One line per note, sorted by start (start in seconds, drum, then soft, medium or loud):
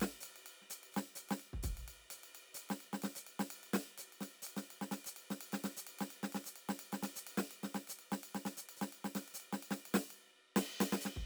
0.01 snare medium
0.01 ride medium
0.21 hi-hat pedal medium
0.21 ride medium
0.36 ride soft
0.62 snare soft
0.71 hi-hat pedal medium
0.71 ride medium
0.84 ride soft
0.92 hi-hat pedal soft
0.92 ride soft
0.97 snare medium
1.16 hi-hat pedal medium
1.16 ride medium
1.29 snare medium
1.29 ride soft
1.40 ride soft
1.54 kick soft
1.63 kick medium
1.63 hi-hat pedal medium
1.63 ride medium
1.78 ride soft
1.88 ride medium
2.11 hi-hat pedal medium
2.11 ride medium
2.24 ride medium
2.35 ride medium
2.55 hi-hat pedal medium
2.55 ride medium
2.70 snare medium
2.70 ride soft
2.81 ride soft
2.94 snare medium
3.03 snare medium
3.03 ride medium
3.16 hi-hat pedal medium
3.16 ride medium
3.27 ride medium
3.40 snare medium
3.51 ride medium
3.64 ride soft
3.74 snare medium
3.74 ride medium
3.98 hi-hat pedal medium
3.98 ride medium
4.13 ride soft
4.21 snare soft
4.21 ride medium
4.43 hi-hat pedal medium
4.47 ride medium
4.57 snare medium
4.57 ride medium
4.71 ride medium
4.82 snare medium
4.93 ride medium
5.05 hi-hat pedal medium
5.05 ride soft
5.17 ride medium
5.31 snare medium
5.41 ride medium
5.53 snare medium
5.53 ride medium
5.64 snare medium
5.64 ride medium
5.77 hi-hat pedal medium
5.87 ride medium
5.99 snare medium
5.99 ride medium
6.11 ride medium
6.24 snare medium
6.33 snare medium
6.33 ride medium
6.45 hi-hat pedal medium
6.45 ride soft
6.56 ride medium
6.69 snare medium
6.80 ride medium
6.93 snare medium
6.93 ride medium
7.03 snare medium
7.03 ride medium
7.17 hi-hat pedal medium
7.27 ride medium
7.38 snare medium
7.38 ride soft
7.51 ride medium
7.64 snare medium
7.75 snare medium
7.75 ride soft
7.88 hi-hat pedal medium
7.88 ride soft
8.00 ride soft
8.10 snare medium
8.10 hi-hat pedal soft
8.24 ride medium
8.35 snare medium
8.35 ride soft
8.46 snare medium
8.46 ride medium
8.58 hi-hat pedal medium
8.69 ride medium
8.77 hi-hat pedal soft
8.82 snare medium
8.82 ride soft
8.93 ride medium
9.05 snare medium
9.16 snare medium
9.16 ride medium
9.29 ride soft
9.35 hi-hat pedal medium
9.41 ride medium
9.53 snare medium
9.63 ride medium
9.71 snare medium
9.71 ride soft
9.86 ride medium
9.95 snare loud
10.11 ride medium
10.57 snare loud
10.57 ride medium
10.81 snare medium
10.81 ride medium
10.93 snare medium
11.01 hi-hat pedal medium
11.06 snare medium
11.17 kick soft